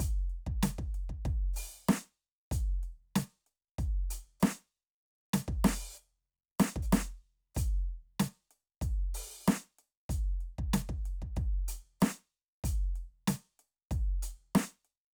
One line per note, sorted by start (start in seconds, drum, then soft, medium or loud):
0.01 closed hi-hat loud
0.01 kick medium
0.31 closed hi-hat soft
0.48 kick medium
0.64 closed hi-hat loud
0.64 snare loud
0.80 kick medium
0.96 closed hi-hat soft
1.11 kick soft
1.26 kick medium
1.26 closed hi-hat soft
1.55 open hi-hat loud
1.55 hi-hat pedal soft
1.90 closed hi-hat medium
1.90 snare loud
1.90 hi-hat pedal medium
2.53 closed hi-hat loud
2.53 kick medium
2.84 closed hi-hat soft
3.17 closed hi-hat loud
3.17 snare loud
3.48 closed hi-hat soft
3.80 closed hi-hat medium
3.80 kick medium
4.12 open hi-hat loud
4.41 closed hi-hat medium
4.41 snare loud
4.41 hi-hat pedal medium
5.35 open hi-hat loud
5.35 snare loud
5.49 kick medium
5.66 open hi-hat loud
5.66 snare loud
5.95 hi-hat pedal medium
6.60 closed hi-hat loud
6.60 snare loud
6.60 hi-hat pedal soft
6.77 kick medium
6.84 hi-hat pedal medium
6.94 closed hi-hat loud
6.94 snare loud
7.56 closed hi-hat loud
7.56 kick medium
7.56 hi-hat pedal medium
8.21 closed hi-hat loud
8.21 snare loud
8.52 closed hi-hat soft
8.83 kick medium
8.83 closed hi-hat medium
9.16 open hi-hat loud
9.48 closed hi-hat loud
9.48 snare loud
9.48 hi-hat pedal medium
9.80 closed hi-hat soft
10.11 closed hi-hat loud
10.11 kick medium
10.42 closed hi-hat soft
10.60 kick medium
10.75 closed hi-hat loud
10.75 snare loud
10.90 kick medium
11.07 closed hi-hat soft
11.23 kick soft
11.38 kick medium
11.38 closed hi-hat soft
11.69 open hi-hat loud
12.02 closed hi-hat medium
12.02 snare loud
12.02 hi-hat pedal medium
12.65 closed hi-hat loud
12.65 kick medium
12.97 closed hi-hat soft
13.29 closed hi-hat loud
13.29 snare loud
13.60 closed hi-hat soft
13.92 kick medium
13.92 closed hi-hat medium
14.24 open hi-hat loud
14.56 open hi-hat loud
14.56 snare loud
14.56 hi-hat pedal medium
14.86 closed hi-hat soft